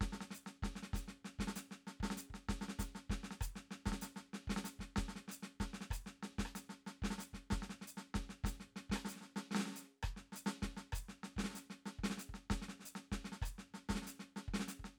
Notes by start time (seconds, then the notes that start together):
0.01 kick, snare
0.13 snare
0.21 snare
0.35 hi-hat pedal
0.46 snare
0.63 kick, snare
0.76 snare
0.83 snare
0.90 kick, snare
0.93 snare, hi-hat pedal
1.08 snare
1.25 snare
1.39 kick, snare
1.48 snare
1.56 snare, hi-hat pedal
1.71 snare
1.87 snare
2.00 kick, snare
2.10 snare
2.17 snare, hi-hat pedal
2.30 kick
2.34 snare
2.49 kick, snare
2.61 snare
2.69 snare
2.79 kick, snare, hi-hat pedal
2.95 snare
3.10 kick, snare
3.24 snare
3.31 snare
3.41 kick, cross-stick, hi-hat pedal
3.56 snare
3.71 snare
3.86 kick, snare
3.92 snare
4.02 snare, hi-hat pedal
4.16 snare
4.34 snare
4.48 kick, snare
4.57 snare
4.64 snare, hi-hat pedal
4.79 kick, snare
4.96 kick, snare
5.08 snare
5.16 snare
5.28 snare, hi-hat pedal
5.43 snare
5.60 kick, snare
5.74 snare
5.81 snare
5.91 kick, cross-stick, hi-hat pedal
6.06 snare
6.23 snare
6.39 kick, snare
6.45 kick, cross-stick
6.55 snare, hi-hat pedal
6.70 snare
6.87 snare
7.02 kick, snare
7.11 snare
7.18 snare, hi-hat pedal
7.33 kick, snare
7.51 kick, snare
7.62 snare
7.70 snare
7.82 snare
7.88 hi-hat pedal
7.97 snare
8.14 kick, snare
8.29 snare
8.44 kick, snare, hi-hat pedal
8.52 kick
8.60 snare
8.76 snare
8.90 kick, snare
8.96 cross-stick
9.05 snare, hi-hat pedal
9.11 snare
9.16 snare
9.21 snare
9.30 snare
9.36 snare
9.51 snare
9.55 snare
9.59 snare
9.62 snare
9.66 snare
9.69 snare
9.71 snare
9.73 snare, hi-hat pedal
9.78 snare
9.83 snare
10.03 kick, cross-stick
10.17 snare
10.32 snare, hi-hat pedal
10.46 snare
10.62 kick, snare
10.77 snare
10.93 kick, cross-stick, hi-hat pedal
11.09 snare
11.24 snare
11.37 kick, snare
11.44 snare
11.49 snare
11.54 snare, hi-hat pedal
11.70 snare
11.86 snare
11.99 kick
12.04 snare
12.10 snare
12.18 snare, hi-hat pedal
12.29 kick
12.34 snare
12.50 kick, snare
12.62 snare
12.69 snare
12.76 snare
12.80 snare
12.86 hi-hat pedal
12.95 snare
13.12 kick, snare
13.25 snare
13.32 snare
13.42 kick, cross-stick, hi-hat pedal
13.49 kick
13.58 snare
13.74 snare
13.89 kick, snare
13.95 snare
14.02 snare
14.06 snare, hi-hat pedal
14.20 snare
14.36 snare
14.48 kick
14.54 snare
14.60 snare
14.68 snare, hi-hat pedal
14.80 kick
14.85 snare